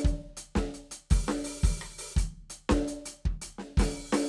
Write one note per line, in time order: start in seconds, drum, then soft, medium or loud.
0.01 kick loud
0.01 hi-hat pedal medium
0.07 closed hi-hat medium
0.37 closed hi-hat loud
0.55 kick medium
0.55 snare loud
0.74 closed hi-hat medium
0.91 closed hi-hat loud
1.10 open hi-hat loud
1.10 kick loud
1.28 snare loud
1.44 open hi-hat loud
1.63 open hi-hat loud
1.63 kick loud
1.81 cross-stick medium
1.98 open hi-hat loud
2.12 hi-hat pedal soft
2.16 closed hi-hat loud
2.16 kick loud
2.50 closed hi-hat loud
2.69 kick medium
2.69 snare loud
2.88 closed hi-hat loud
3.05 closed hi-hat loud
3.25 kick medium
3.41 closed hi-hat loud
3.58 snare medium
3.77 open hi-hat loud
3.77 kick loud
3.77 snare loud
4.12 open hi-hat loud
4.12 snare loud